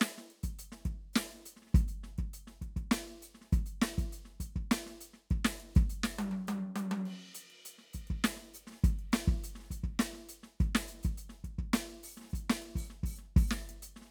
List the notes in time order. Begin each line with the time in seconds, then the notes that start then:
0.01 snare
0.18 snare
0.30 closed hi-hat
0.43 closed hi-hat, kick
0.59 closed hi-hat
0.72 snare
0.81 snare
0.85 kick, closed hi-hat
1.00 open hi-hat
1.13 snare, hi-hat pedal
1.31 snare, closed hi-hat
1.45 closed hi-hat
1.56 snare
1.62 snare
1.67 snare
1.72 closed hi-hat, kick, snare
1.88 closed hi-hat
2.03 snare
2.18 kick, closed hi-hat
2.33 closed hi-hat
2.47 snare
2.62 kick, closed hi-hat
2.76 kick, closed hi-hat
2.91 open hi-hat, snare
3.22 open hi-hat, hi-hat pedal
3.34 snare
3.41 snare
3.44 snare
3.52 closed hi-hat, kick
3.66 closed hi-hat
3.82 snare
3.98 closed hi-hat, kick
4.12 closed hi-hat
4.25 snare
4.30 snare
4.40 closed hi-hat, kick
4.56 kick
4.71 closed hi-hat, snare
4.86 snare
4.89 snare
5.01 closed hi-hat
5.13 snare
5.30 kick, closed hi-hat
5.45 snare
5.60 closed hi-hat
5.75 closed hi-hat, kick
5.89 closed hi-hat
6.03 snare
6.19 hi-hat pedal, high tom
6.31 high tom
6.47 hi-hat pedal, high tom
6.76 hi-hat pedal, high tom
6.91 high tom
7.06 crash
7.35 closed hi-hat
7.50 closed hi-hat
7.65 closed hi-hat
7.78 snare
7.93 closed hi-hat, kick
8.07 kick, closed hi-hat
8.24 closed hi-hat, snare
8.36 snare
8.54 open hi-hat, hi-hat pedal
8.67 snare
8.70 snare
8.73 snare
8.84 closed hi-hat, kick
8.99 closed hi-hat
9.12 closed hi-hat, snare
9.28 kick
9.44 closed hi-hat
9.55 snare
9.60 snare
9.63 snare
9.66 snare
9.71 closed hi-hat, kick
9.84 kick, closed hi-hat
9.99 closed hi-hat, snare
10.13 snare
10.15 snare
10.29 closed hi-hat
10.43 snare
10.60 closed hi-hat, kick
10.75 snare
10.88 closed hi-hat
11.03 closed hi-hat, kick
11.17 closed hi-hat
11.29 snare
11.44 kick, closed hi-hat
11.58 kick
11.73 open hi-hat, snare
11.87 snare
12.03 open hi-hat
12.17 snare
12.21 snare
12.24 snare
12.29 kick, snare, hi-hat pedal
12.35 closed hi-hat
12.50 snare
12.62 closed hi-hat
12.75 open hi-hat, kick
12.84 hi-hat pedal
12.90 snare
13.03 open hi-hat, kick
13.16 snare, hi-hat pedal
13.25 snare
13.36 open hi-hat, kick
13.48 snare, hi-hat pedal
13.69 closed hi-hat
13.82 closed hi-hat
13.96 snare
14.02 snare
14.05 snare